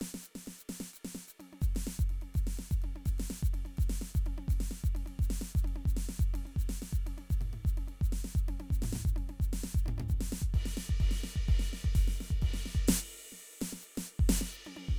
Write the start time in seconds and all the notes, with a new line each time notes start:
0.01 snare, ride
0.15 snare
0.23 hi-hat pedal, ride
0.36 snare, ride
0.47 snare, ride
0.59 hi-hat pedal
0.70 snare, ride
0.81 snare, ride
0.94 hi-hat pedal, ride
1.05 snare
1.15 snare, ride
1.28 hi-hat pedal, ride
1.40 high tom, ride
1.53 high tom
1.62 kick, hi-hat pedal, ride
1.76 snare, ride
1.87 snare, ride
1.99 kick, hi-hat pedal
2.10 high tom, ride
2.22 high tom, ride
2.35 kick, hi-hat pedal, ride
2.48 snare
2.58 snare, ride
2.71 kick, hi-hat pedal, ride
2.83 high tom, ride
2.96 high tom
3.06 kick, hi-hat pedal, ride
3.19 snare, ride
3.31 snare, ride
3.43 kick, hi-hat pedal
3.54 high tom, ride
3.66 high tom, ride
3.78 kick, hi-hat pedal, ride
3.90 snare
4.02 snare, ride
4.15 kick, hi-hat pedal, ride
4.27 high tom, ride
4.38 high tom
4.49 kick, hi-hat pedal, ride
4.61 snare, ride
4.72 snare, ride
4.84 kick, hi-hat pedal
4.96 high tom, ride
5.07 high tom, ride
5.20 kick, hi-hat pedal, ride
5.31 snare
5.42 snare, ride
5.56 kick, hi-hat pedal, ride
5.65 high tom, ride
5.76 high tom
5.86 kick, hi-hat pedal
5.97 snare, ride
6.09 snare, ride
6.20 kick, hi-hat pedal
6.34 high tom, ride
6.46 high tom, ride
6.57 kick, hi-hat pedal
6.70 snare, ride
6.83 snare, ride
6.93 kick, hi-hat pedal
7.07 high tom, ride
7.18 high tom, ride
7.31 kick, hi-hat pedal
7.41 floor tom, ride
7.54 floor tom, ride
7.66 kick, hi-hat pedal
7.78 high tom, ride
7.88 high tom, ride
8.02 kick, hi-hat pedal
8.13 snare, ride
8.25 snare, ride
8.36 kick, hi-hat pedal
8.49 high tom, ride
8.61 high tom, ride
8.71 kick, hi-hat pedal
8.83 snare, floor tom
8.93 snare, floor tom
9.06 kick, hi-hat pedal
9.17 high tom, ride
9.30 high tom, ride
9.41 kick, hi-hat pedal
9.54 snare, ride
9.64 snare, ride
9.75 kick, hi-hat pedal
9.87 floor tom, high tom
9.99 floor tom, high tom
10.09 kick, hi-hat pedal
10.21 snare, ride
10.33 snare, ride
10.42 kick
10.55 kick, ride
10.66 snare
10.78 snare
10.90 kick
11.01 kick, ride
11.12 snare
11.24 snare
11.37 kick
11.49 kick, ride
11.60 snare
11.74 snare
11.85 kick
11.96 open hi-hat, kick
12.08 snare
12.21 snare
12.31 kick
12.42 kick, ride
12.54 snare
12.66 snare
12.76 kick
12.88 snare, crash
13.33 snare
13.38 hi-hat pedal, ride
13.62 snare, ride
13.73 snare
13.81 hi-hat pedal, ride
13.96 snare, ride
14.07 ride
14.20 kick
14.30 snare, ride
14.42 snare
14.52 hi-hat pedal, ride
14.66 high tom, ride
14.77 high tom
14.89 kick